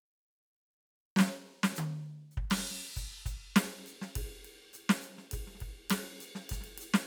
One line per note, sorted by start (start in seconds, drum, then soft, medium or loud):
1.16 snare loud
1.16 hi-hat pedal medium
1.19 snare loud
1.20 snare loud
1.27 snare soft
1.40 snare soft
1.42 snare soft
1.63 snare loud
1.72 snare soft
1.72 hi-hat pedal loud
1.78 high tom loud
2.31 hi-hat pedal soft
2.37 kick medium
2.44 kick soft
2.48 kick soft
2.48 snare loud
2.48 crash loud
2.58 snare soft
2.71 snare soft
2.80 snare soft
2.86 snare soft
2.96 open hi-hat medium
2.96 kick soft
3.05 kick soft
3.26 closed hi-hat medium
3.26 kick soft
3.32 kick soft
3.56 snare loud
3.56 ride loud
3.63 snare soft
3.86 hi-hat pedal medium
3.86 ride soft
4.01 snare medium
4.15 kick soft
4.15 hi-hat pedal soft
4.15 ride loud
4.22 kick soft
4.22 snare soft
4.25 kick soft
4.25 snare soft
4.30 snare soft
4.45 ride medium
4.73 hi-hat pedal medium
4.73 ride medium
4.89 snare loud
5.01 hi-hat pedal medium
5.01 ride soft
5.18 snare soft
5.31 kick soft
5.31 hi-hat pedal medium
5.31 ride medium
5.47 snare soft
5.55 snare soft
5.55 hi-hat pedal soft
5.61 kick soft
5.61 ride medium
5.90 snare loud
5.90 hi-hat pedal medium
5.90 ride loud
6.02 snare soft
6.21 hi-hat pedal medium
6.21 ride medium
6.35 snare medium
6.49 kick soft
6.49 snare soft
6.49 hi-hat pedal medium
6.49 ride bell medium
6.60 kick soft
6.60 snare soft
6.64 snare soft
6.64 ride medium
6.78 hi-hat pedal medium
6.78 ride medium
6.94 snare loud